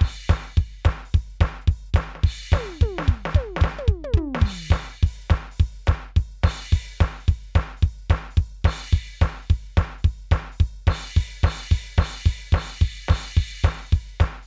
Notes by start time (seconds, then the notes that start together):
0.01 kick, crash
0.27 closed hi-hat, kick, snare, hi-hat pedal
0.57 open hi-hat, kick
0.82 closed hi-hat, kick, snare, hi-hat pedal
1.05 open hi-hat
1.14 open hi-hat, kick
1.36 hi-hat pedal
1.41 closed hi-hat, kick, snare
1.61 closed hi-hat
1.68 open hi-hat, kick
1.88 hi-hat pedal
1.94 closed hi-hat, kick, snare
2.15 snare
2.23 kick, crash
2.48 hi-hat pedal
2.52 kick, snare, high tom
2.81 kick, mid tom
2.98 snare, hi-hat pedal
3.08 kick
3.25 snare
3.35 kick, high tom
3.56 snare, hi-hat pedal
3.61 kick, snare
3.78 high tom
3.88 kick
4.04 high tom
4.14 kick, floor tom
4.35 snare
4.41 kick, crash
4.70 closed hi-hat, kick, snare, hi-hat pedal
4.91 open hi-hat
5.03 kick, open hi-hat
5.27 kick, snare, hi-hat pedal
5.31 closed hi-hat
5.51 open hi-hat
5.60 open hi-hat, kick
5.85 closed hi-hat, kick, snare, hi-hat pedal
6.16 open hi-hat, kick
6.41 kick, snare, hi-hat pedal, crash
6.72 open hi-hat, kick
6.98 closed hi-hat, kick, snare, hi-hat pedal
7.20 open hi-hat
7.28 open hi-hat, kick
7.53 closed hi-hat, kick, snare, hi-hat pedal
7.77 open hi-hat
7.82 open hi-hat, kick
8.08 closed hi-hat, kick, snare, hi-hat pedal
8.30 open hi-hat
8.37 open hi-hat, kick
8.61 kick, snare, hi-hat pedal, crash
8.93 open hi-hat, kick
9.20 closed hi-hat, kick, snare, hi-hat pedal
9.43 open hi-hat
9.50 open hi-hat, kick
9.75 closed hi-hat, kick, snare, hi-hat pedal
9.98 open hi-hat
10.04 open hi-hat, kick
10.29 closed hi-hat, kick, snare, hi-hat pedal
10.52 open hi-hat
10.60 open hi-hat, kick
10.84 kick, snare, hi-hat pedal, crash
11.16 open hi-hat, kick
11.42 kick, snare, hi-hat pedal, crash
11.71 open hi-hat, kick
11.96 kick, snare, hi-hat pedal, crash
12.26 open hi-hat, kick
12.49 kick, hi-hat pedal
12.54 snare, crash
12.81 kick, crash
13.07 kick, snare, hi-hat pedal, crash
13.36 kick, crash
13.63 closed hi-hat, kick, snare, hi-hat pedal
13.85 open hi-hat
13.92 open hi-hat, kick
14.18 closed hi-hat, kick, snare, hi-hat pedal
14.42 open hi-hat